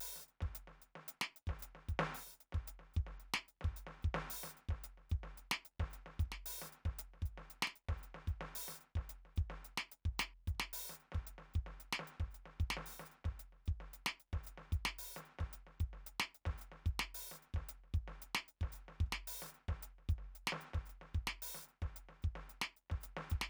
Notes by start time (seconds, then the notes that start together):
0.01 open hi-hat
0.16 snare
0.23 hi-hat pedal
0.29 closed hi-hat
0.41 kick, snare
0.48 kick
0.55 closed hi-hat
0.68 snare
0.82 closed hi-hat
0.96 snare
1.09 closed hi-hat
1.22 snare
1.37 closed hi-hat
1.48 kick, snare
1.59 closed hi-hat, hi-hat pedal
1.75 snare
1.89 closed hi-hat, kick
2.00 snare
2.15 open hi-hat
2.27 snare
2.33 hi-hat pedal
2.41 closed hi-hat
2.53 kick, snare
2.68 closed hi-hat
2.80 snare
2.94 kick, closed hi-hat
3.07 snare
3.20 closed hi-hat
3.34 snare
3.49 closed hi-hat
3.62 kick, snare
3.70 kick
3.77 open hi-hat, hi-hat pedal
3.87 snare
4.03 kick, closed hi-hat
4.15 snare
4.31 open hi-hat
4.44 snare
4.50 hi-hat pedal
4.57 closed hi-hat
4.69 kick, snare
4.84 closed hi-hat
4.98 snare
5.10 closed hi-hat, kick
5.24 snare
5.38 closed hi-hat
5.52 snare
5.66 closed hi-hat
5.80 kick, snare
5.91 closed hi-hat, hi-hat pedal
6.07 snare
6.20 closed hi-hat, kick
6.26 kick
6.32 snare
6.46 open hi-hat
6.62 snare
6.67 hi-hat pedal
6.73 closed hi-hat
6.86 kick, snare
6.99 closed hi-hat
7.14 snare
7.23 closed hi-hat, kick
7.38 snare
7.51 closed hi-hat
7.63 snare
7.68 snare
7.76 closed hi-hat
7.89 kick, snare
7.94 kick, hi-hat pedal
8.04 closed hi-hat
8.15 snare
8.28 kick, closed hi-hat
8.41 snare
8.56 open hi-hat
8.69 snare
8.76 hi-hat pedal
8.81 closed hi-hat
8.96 kick, snare
9.10 closed hi-hat
9.26 snare
9.37 closed hi-hat, kick
9.50 snare
9.65 closed hi-hat
9.78 snare
9.92 closed hi-hat
10.06 kick
10.19 closed hi-hat, snare, hi-hat pedal
10.48 closed hi-hat, kick
10.55 kick
10.60 snare
10.74 open hi-hat
10.90 snare
10.94 hi-hat pedal
11.00 closed hi-hat
11.12 kick, snare
11.27 closed hi-hat
11.39 snare
11.54 closed hi-hat, kick
11.67 snare
11.81 closed hi-hat
11.93 snare
12.00 snare
12.08 closed hi-hat
12.20 kick, snare
12.26 kick
12.31 closed hi-hat, hi-hat pedal
12.46 snare
12.60 closed hi-hat, kick
12.71 snare
12.77 snare
12.86 open hi-hat
13.00 snare
13.06 hi-hat pedal
13.12 closed hi-hat
13.25 kick, snare
13.31 kick
13.40 closed hi-hat
13.53 snare
13.66 closed hi-hat, kick
13.81 snare
13.94 closed hi-hat
14.07 snare
14.20 closed hi-hat
14.33 kick, snare
14.44 closed hi-hat, hi-hat pedal
14.58 snare
14.73 closed hi-hat, kick
14.86 snare
14.99 open hi-hat
15.17 snare, hi-hat pedal
15.26 closed hi-hat
15.39 kick, snare
15.53 closed hi-hat
15.67 snare
15.80 closed hi-hat, kick
15.94 snare
16.07 closed hi-hat
16.20 snare
16.35 closed hi-hat
16.46 kick, snare
16.52 kick
16.58 closed hi-hat, hi-hat pedal
16.72 snare
16.86 closed hi-hat, kick
17.00 snare
17.15 open hi-hat
17.32 snare, hi-hat pedal
17.43 closed hi-hat
17.54 kick, snare
17.60 kick
17.69 closed hi-hat
17.84 snare
17.95 closed hi-hat, kick
18.08 snare
18.22 closed hi-hat
18.35 snare
18.49 closed hi-hat
18.62 kick, snare
18.72 closed hi-hat, hi-hat pedal
18.89 snare
19.01 kick
19.07 kick
19.13 snare
19.28 open hi-hat
19.43 snare
19.49 hi-hat pedal
19.55 closed hi-hat
19.69 kick, snare
19.83 closed hi-hat
19.99 snare
20.09 closed hi-hat, kick
20.19 snare
20.25 snare
20.36 closed hi-hat
20.48 snare
20.53 snare
20.61 closed hi-hat
20.74 kick, snare
20.86 closed hi-hat, hi-hat pedal
21.02 snare
21.15 closed hi-hat, kick
21.28 snare
21.43 open hi-hat
21.55 snare
21.63 hi-hat pedal
21.69 closed hi-hat
21.82 kick, snare
21.97 closed hi-hat
22.09 snare
22.23 closed hi-hat, kick
22.36 snare
22.50 closed hi-hat
22.62 snare
22.77 closed hi-hat
22.91 kick, snare
23.01 closed hi-hat, hi-hat pedal
23.17 snare
23.30 kick, closed hi-hat
23.42 snare